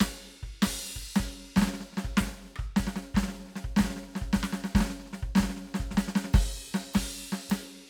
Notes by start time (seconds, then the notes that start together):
0.01 kick, snare, ride bell
0.43 kick
0.63 snare, crash
0.67 kick
0.96 kick
1.16 kick, snare, ride bell
1.57 kick, snare
1.62 snare
1.68 snare
1.74 snare
1.81 snare
1.93 snare
1.98 snare
2.05 kick
2.18 kick, snare
2.23 snare
2.27 snare
2.32 snare
2.37 snare
2.41 snare
2.45 snare
2.48 snare
2.51 snare
2.56 kick, cross-stick
2.77 kick, snare
2.87 snare
2.96 snare
3.15 kick, cross-stick, snare
3.23 snare
3.29 snare
3.35 snare
3.40 snare
3.48 snare
3.50 snare
3.52 snare
3.56 snare
3.65 kick
3.77 snare
3.79 kick, snare
3.84 snare
3.90 snare
3.97 snare
4.03 snare
4.09 snare
4.13 snare
4.16 snare
4.22 kick
4.34 kick, snare
4.44 snare
4.53 snare
4.64 snare
4.75 kick, snare
4.79 snare
4.81 snare
4.85 snare
4.90 snare
5.00 snare
5.06 snare
5.11 snare
5.13 snare
5.23 kick
5.36 snare
5.38 kick, snare
5.44 snare
5.50 snare
5.57 snare
5.61 snare
5.65 snare
5.68 snare
5.75 snare
5.80 kick
5.91 kick, snare
5.98 snare
6.08 snare
6.16 snare
6.25 snare
6.34 kick, snare, crash
6.75 snare
6.94 kick, snare, crash
7.33 snare
7.50 kick, snare, ride